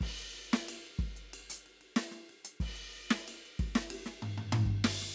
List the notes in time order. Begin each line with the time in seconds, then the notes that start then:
0.01 kick, crash
0.18 closed hi-hat
0.34 ride
0.53 snare
0.69 ride bell
0.87 closed hi-hat
0.99 kick, ride
1.17 closed hi-hat
1.34 ride bell
1.50 closed hi-hat
1.66 ride
1.81 ride
1.96 snare, ride bell
2.12 snare
2.30 ride
2.45 closed hi-hat
2.60 kick, crash
2.76 closed hi-hat
2.93 ride bell
3.11 snare
3.28 ride bell
3.46 closed hi-hat
3.60 kick, ride
3.76 snare
3.91 ride
4.06 snare
4.22 floor tom
4.38 floor tom
4.53 floor tom
4.65 kick
4.84 snare, ride
5.02 snare